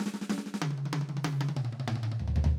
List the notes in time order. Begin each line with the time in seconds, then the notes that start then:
0.00 snare
0.06 snare
0.14 snare
0.21 snare
0.29 snare
0.38 snare
0.46 snare
0.54 snare
0.62 high tom
0.70 high tom
0.77 high tom
0.85 high tom
0.93 high tom
1.01 high tom
1.09 high tom
1.17 high tom
1.24 kick, crash, high tom
1.32 high tom
1.41 high tom
1.48 high tom
1.56 mid tom
1.65 mid tom
1.72 mid tom
1.80 mid tom
1.87 kick, mid tom
1.95 mid tom
2.03 mid tom
2.11 mid tom
2.19 floor tom
2.27 floor tom
2.36 floor tom
2.44 floor tom